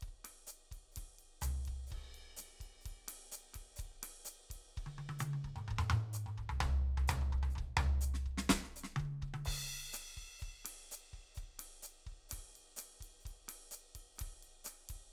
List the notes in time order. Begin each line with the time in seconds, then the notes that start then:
0.01 kick, ride
0.08 kick
0.24 cross-stick, ride
0.47 hi-hat pedal, ride
0.71 kick, ride
0.76 kick
0.92 hi-hat pedal
0.96 kick, snare, ride
1.02 kick
1.19 ride
1.41 floor tom, hi-hat pedal, ride
1.65 kick, ride
1.73 kick
1.87 hi-hat pedal, ride
1.92 kick, snare
1.97 kick
2.14 ride
2.37 snare, hi-hat pedal, ride
2.60 kick, ride
2.65 kick
2.81 hi-hat pedal
2.85 kick, ride
2.91 kick
3.08 cross-stick, ride
3.32 hi-hat pedal, ride
3.54 kick, cross-stick, ride
3.60 kick
3.76 kick, hi-hat pedal, ride
3.83 kick, snare
4.03 cross-stick, snare, ride
4.25 hi-hat pedal, ride
4.50 kick, ride
4.55 kick
4.77 kick, ride
4.83 kick, high tom
4.98 high tom
5.09 high tom
5.19 hi-hat pedal, high tom
5.33 high tom
5.44 kick, mid tom
5.49 kick
5.56 mid tom
5.68 kick, mid tom
5.76 kick, mid tom
5.90 mid tom
6.03 mid tom
6.13 hi-hat pedal, mid tom
6.26 mid tom
6.38 kick, floor tom
6.43 kick
6.49 floor tom
6.60 kick, floor tom
6.75 floor tom
6.87 floor tom
6.97 floor tom
7.08 hi-hat pedal, floor tom
7.21 floor tom
7.32 kick, floor tom
7.38 kick
7.43 floor tom
7.50 hi-hat pedal
7.55 kick, floor tom
7.77 floor tom
8.01 hi-hat pedal
8.14 snare
8.26 kick
8.31 kick
8.38 snare
8.49 kick, snare
8.64 snare
8.76 hi-hat pedal
8.84 snare
8.96 kick, high tom
9.05 kick
9.22 kick, high tom
9.28 kick
9.34 high tom
9.45 kick, crash
9.54 kick
9.93 cross-stick, snare, hi-hat pedal, ride
10.17 kick, ride
10.22 kick
10.39 kick, hi-hat pedal, ride
10.47 kick
10.64 cross-stick, snare, ride
10.91 hi-hat pedal
11.13 kick
11.18 kick
11.35 kick, hi-hat pedal
11.43 kick
11.59 cross-stick, snare, ride
11.82 hi-hat pedal
12.06 kick
12.12 kick
12.29 kick, cross-stick, snare, hi-hat pedal, ride
12.38 kick
12.55 ride
12.76 cross-stick, hi-hat pedal, ride
13.00 kick, ride
13.20 hi-hat pedal
13.25 kick, ride
13.30 kick
13.48 cross-stick, ride
13.71 hi-hat pedal, ride
13.95 kick, ride
14.16 cross-stick, snare, hi-hat pedal, ride
14.21 kick
14.26 kick
14.43 ride
14.64 cross-stick, snare, hi-hat pedal, ride
14.89 kick, ride
14.95 kick